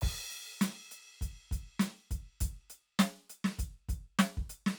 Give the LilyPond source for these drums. \new DrumStaff \drummode { \time 4/4 \tempo 4 = 100 <cymc hhp bd>8 hh8 <sn hh>8 hh8 <bd hh>8 <bd hh>8 <sn hh>8 <bd hh>8 | <hh bd>8 hh8 <sn hh>8 hh16 sn16 <bd hh>8 <bd hh>8 <sn hh>16 bd16 hh16 sn16 | }